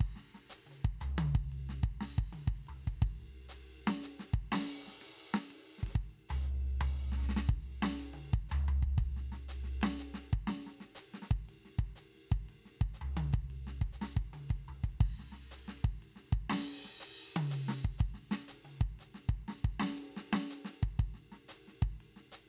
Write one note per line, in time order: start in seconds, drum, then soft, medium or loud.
0.01 kick soft
0.01 crash soft
0.17 snare soft
0.35 snare soft
0.51 hi-hat pedal medium
0.51 ride soft
0.67 high tom soft
0.72 hi-hat pedal soft
0.85 kick soft
1.01 floor tom medium
1.01 hi-hat pedal medium
1.10 closed hi-hat soft
1.12 closed hi-hat soft
1.19 high tom loud
1.36 kick medium
1.36 ride medium
1.53 ride soft
1.70 snare soft
1.84 kick soft
2.02 snare medium
2.02 crash medium
2.19 kick soft
2.33 high tom medium
2.33 ride medium
2.48 kick soft
2.68 floor tom medium
2.68 ride soft
2.88 kick soft
3.03 kick medium
3.03 ride medium
3.23 kick soft
3.50 hi-hat pedal medium
3.54 ride soft
3.88 snare medium
3.88 ride medium
4.04 hi-hat pedal medium
4.04 ride soft
4.20 snare soft
4.34 kick soft
4.53 open hi-hat loud
4.53 snare loud
4.88 snare soft
5.02 ride medium
5.35 snare medium
5.35 ride soft
5.51 ride soft
5.79 snare soft
5.84 kick soft
5.84 ride soft
5.88 snare soft
5.88 hi-hat pedal soft
5.96 kick soft
6.03 ride soft
6.29 open hi-hat medium
6.29 floor tom medium
6.44 hi-hat pedal soft
6.81 open hi-hat medium
6.81 floor tom loud
7.13 snare soft
7.18 snare soft
7.23 snare soft
7.30 snare soft
7.37 snare medium
7.50 kick medium
7.50 ride medium
7.83 snare loud
7.83 ride medium
8.00 hi-hat pedal soft
8.00 ride medium
8.14 high tom soft
8.34 kick medium
8.50 floor tom loud
8.50 hi-hat pedal medium
8.69 floor tom medium
8.83 kick soft
8.99 kick medium
8.99 ride medium
9.17 snare soft
9.33 snare soft
9.49 hi-hat pedal medium
9.49 ride soft
9.65 snare soft
9.82 snare loud
9.82 ride medium
9.99 hi-hat pedal medium
9.99 ride soft
10.15 snare soft
10.34 kick soft
10.48 snare medium
10.48 ride medium
10.67 snare soft
10.81 snare soft
10.96 hi-hat pedal medium
11.00 ride soft
11.14 snare soft
11.23 snare soft
11.32 kick medium
11.32 ride medium
11.49 ride medium
11.66 snare soft
11.79 kick soft
11.96 hi-hat pedal medium
11.96 ride medium
12.15 snare soft
12.32 kick medium
12.32 ride medium
12.49 ride medium
12.66 snare soft
12.82 kick medium
12.95 hi-hat pedal medium
13.02 floor tom medium
13.17 high tom medium
13.34 kick soft
13.34 ride soft
13.40 hi-hat pedal soft
13.51 ride soft
13.68 snare soft
13.82 kick soft
13.93 hi-hat pedal medium
14.02 snare medium
14.02 ride medium
14.17 kick soft
14.34 high tom medium
14.34 ride medium
14.50 kick soft
14.50 ride soft
14.69 floor tom medium
14.84 kick soft
15.01 kick medium
15.01 crash medium
15.20 snare soft
15.33 snare soft
15.52 hi-hat pedal medium
15.52 ride soft
15.69 snare soft
15.85 kick medium
15.85 ride medium
16.03 ride soft
16.17 snare soft
16.33 kick medium
16.50 snare loud
16.50 crash medium
16.85 snare soft
17.01 hi-hat pedal medium
17.01 ride medium
17.37 high tom medium
17.37 ride medium
17.52 hi-hat pedal medium
17.52 ride soft
17.69 snare soft
17.85 kick soft
17.99 kick medium
17.99 hi-hat pedal medium
17.99 ride medium
18.15 snare soft
18.32 snare medium
18.49 hi-hat pedal medium
18.49 ride medium
18.65 high tom soft
18.82 kick medium
18.82 ride soft
19.00 hi-hat pedal medium
19.00 ride soft
19.15 snare soft
19.30 kick soft
19.49 snare medium
19.49 ride medium
19.65 kick soft
19.80 snare loud
19.80 ride medium
19.99 ride medium
20.17 snare soft
20.34 snare loud
20.51 hi-hat pedal medium
20.51 ride medium
20.66 snare soft
20.84 kick soft
20.84 ride soft
21.00 kick medium
21.00 ride medium
21.15 snare soft
21.32 snare soft
21.49 hi-hat pedal medium
21.49 ride soft
21.68 snare soft
21.83 kick medium
21.83 ride soft
22.01 ride medium
22.17 snare soft
22.33 hi-hat pedal medium